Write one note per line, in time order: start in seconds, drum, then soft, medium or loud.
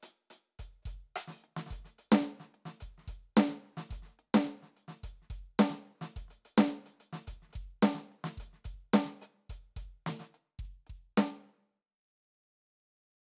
0.01 closed hi-hat loud
0.01 hi-hat pedal soft
0.31 closed hi-hat medium
0.60 closed hi-hat medium
0.60 kick soft
0.83 kick soft
0.83 hi-hat pedal soft
0.87 closed hi-hat medium
0.92 kick soft
0.95 kick soft
1.16 closed hi-hat medium
1.16 cross-stick medium
1.28 open hi-hat medium
1.28 snare soft
1.41 closed hi-hat soft
1.41 hi-hat pedal soft
1.57 snare medium
1.67 snare soft
1.71 closed hi-hat medium
1.71 kick soft
1.85 closed hi-hat medium
1.85 snare soft
1.99 closed hi-hat medium
2.13 snare loud
2.21 snare soft
2.28 closed hi-hat medium
2.41 snare soft
2.55 closed hi-hat soft
2.66 snare soft
2.73 snare soft
2.81 closed hi-hat medium
2.81 kick soft
2.98 snare soft
3.03 snare soft
3.06 closed hi-hat medium
3.06 kick soft
3.06 snare soft
3.38 closed hi-hat medium
3.38 snare loud
3.49 closed hi-hat soft
3.49 snare soft
3.66 closed hi-hat soft
3.78 snare medium
3.90 closed hi-hat medium
3.90 kick soft
3.90 snare soft
3.97 kick soft
4.03 closed hi-hat soft
4.03 snare soft
4.09 snare soft
4.20 closed hi-hat soft
4.35 snare loud
4.41 snare soft
4.41 hi-hat pedal soft
4.49 closed hi-hat soft
4.63 snare soft
4.77 closed hi-hat soft
4.89 snare soft
5.04 closed hi-hat medium
5.04 kick soft
5.22 snare soft
5.28 closed hi-hat medium
5.28 kick soft
5.28 snare soft
5.37 kick soft
5.39 kick soft
5.60 closed hi-hat medium
5.60 snare loud
5.71 snare soft
5.75 closed hi-hat soft
5.88 closed hi-hat soft
6.02 snare medium
6.16 closed hi-hat medium
6.16 kick soft
6.16 snare soft
6.29 closed hi-hat medium
6.29 snare soft
6.34 snare soft
6.46 closed hi-hat medium
6.58 snare loud
6.67 snare soft
6.67 hi-hat pedal medium
6.73 closed hi-hat soft
6.86 closed hi-hat medium
6.86 snare soft
7.01 closed hi-hat medium
7.13 snare medium
7.28 closed hi-hat medium
7.28 kick soft
7.34 kick soft
7.43 snare soft
7.50 closed hi-hat medium
7.50 snare soft
7.56 kick soft
7.62 kick soft
7.65 kick soft
7.83 closed hi-hat medium
7.83 snare loud
7.95 closed hi-hat soft
7.95 snare soft
8.12 closed hi-hat soft
8.25 snare medium
8.38 closed hi-hat medium
8.38 kick soft
8.54 snare soft
8.65 closed hi-hat medium
8.65 kick soft
8.74 kick soft
8.94 closed hi-hat loud
8.94 snare loud
9.06 snare soft
9.22 open hi-hat medium
9.22 hi-hat pedal medium
9.50 closed hi-hat medium
9.50 kick soft
9.77 closed hi-hat medium
9.77 kick soft
9.83 kick soft
9.85 kick soft
10.07 closed hi-hat medium
10.07 snare medium
10.20 closed hi-hat medium
10.20 snare soft
10.35 closed hi-hat medium
10.60 kick soft
10.64 kick soft
10.64 closed hi-hat soft
10.87 kick soft
10.87 closed hi-hat soft
11.18 closed hi-hat medium
11.18 snare loud